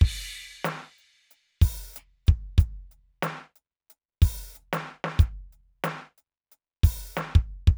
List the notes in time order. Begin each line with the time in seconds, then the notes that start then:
0.02 kick, crash
0.65 snare, closed hi-hat
0.99 closed hi-hat
1.31 closed hi-hat
1.62 kick, open hi-hat
1.93 closed hi-hat, hi-hat pedal
1.98 snare
2.27 closed hi-hat, kick
2.58 kick, closed hi-hat
2.92 closed hi-hat
3.23 snare, closed hi-hat
3.56 closed hi-hat
3.90 closed hi-hat
4.22 kick, open hi-hat
4.55 hi-hat pedal
4.73 snare, closed hi-hat
5.05 snare
5.20 kick, closed hi-hat
5.53 closed hi-hat
5.84 snare, closed hi-hat
6.18 closed hi-hat
6.52 closed hi-hat
6.84 kick, open hi-hat
7.15 snare, closed hi-hat, hi-hat pedal
7.36 kick
7.68 kick